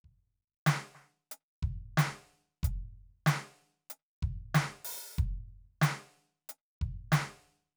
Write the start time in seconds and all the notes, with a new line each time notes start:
0.06 kick
0.66 closed hi-hat, snare
0.95 snare
1.31 closed hi-hat
1.62 kick
1.67 closed hi-hat
1.97 closed hi-hat, snare
2.63 closed hi-hat, kick
3.26 closed hi-hat, snare
3.90 closed hi-hat
4.22 kick, closed hi-hat
4.55 closed hi-hat, snare
4.85 open hi-hat
5.17 kick, hi-hat pedal
5.49 closed hi-hat
5.82 closed hi-hat, snare
6.49 closed hi-hat
6.81 kick, closed hi-hat
7.12 closed hi-hat, snare